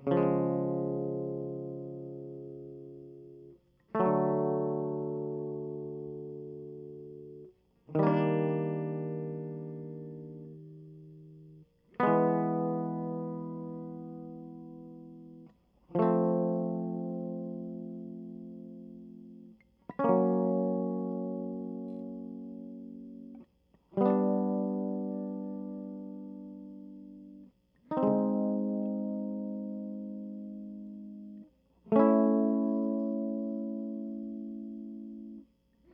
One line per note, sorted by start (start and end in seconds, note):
0.09 3.58 C#3
0.13 3.58 F3
0.18 3.55 G#3
3.96 7.49 A3
4.01 7.53 F#3
4.07 7.50 D3
7.96 11.67 D#3
7.96 11.64 G3
8.04 10.59 A#3
8.04 10.49 D4
12.01 15.56 G#3
12.01 15.50 B3
12.08 15.54 E3
15.96 19.56 F3
15.96 19.57 A3
16.03 19.52 C4
20.00 23.44 C#4
20.05 23.47 A#3
20.10 23.47 F#3
23.98 27.52 G3
23.98 27.53 B3
24.06 27.49 D4
27.92 31.52 D#4
27.98 31.48 C4
28.04 31.46 G#3
28.09 28.15 D3
31.93 35.42 A3
31.93 35.47 C#4
32.00 35.44 E4